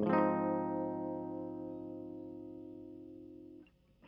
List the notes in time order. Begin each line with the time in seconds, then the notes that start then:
0.00 G#2
0.07 F3 C4
0.13 D#4
0.18 G4